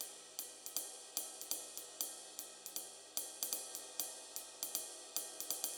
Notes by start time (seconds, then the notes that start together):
0.01 ride
0.39 ride
0.67 ride
0.77 ride
1.17 ride
1.42 ride
1.52 ride
1.78 ride
2.01 ride
2.39 ride
2.66 ride
2.77 ride
3.18 ride
3.43 ride
3.75 ride
4.00 ride
4.37 ride
4.63 ride
4.75 ride
5.17 ride
5.41 ride
5.51 ride
5.64 ride
5.74 ride